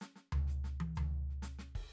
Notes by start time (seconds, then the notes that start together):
0.00 snare, hi-hat pedal
0.15 snare
0.32 floor tom
0.47 snare, hi-hat pedal
0.64 snare
0.80 closed hi-hat, high tom
0.95 floor tom, hi-hat pedal
1.30 snare
1.42 snare, hi-hat pedal
1.58 snare
1.75 kick, ride